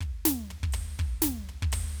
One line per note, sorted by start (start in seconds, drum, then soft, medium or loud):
0.01 kick medium
0.01 floor tom medium
0.25 snare loud
0.25 floor tom medium
0.50 floor tom medium
0.63 kick medium
0.72 open hi-hat medium
0.72 floor tom loud
0.99 kick medium
0.99 floor tom medium
1.22 snare loud
1.22 floor tom medium
1.49 floor tom soft
1.62 kick medium
1.72 open hi-hat medium
1.72 floor tom loud